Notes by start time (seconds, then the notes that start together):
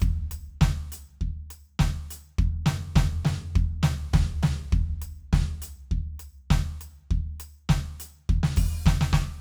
0.01 kick, percussion
0.32 percussion
0.62 kick, snare
0.93 percussion
1.22 kick
1.51 percussion
1.80 kick, snare
2.11 percussion
2.39 kick
2.67 snare, mid tom
2.96 kick, snare, mid tom
3.25 snare, mid tom
3.56 kick
3.84 snare, floor tom
4.14 kick, snare, floor tom
4.44 snare, floor tom
4.73 kick
5.02 percussion
5.33 kick, snare
5.63 percussion
5.92 kick
6.20 percussion
6.51 kick, snare
6.82 percussion
7.11 kick, ride
7.41 percussion
7.70 kick, snare
8.01 percussion
8.30 kick
8.44 snare
8.57 kick, percussion
8.87 kick, snare
9.02 snare
9.13 kick, snare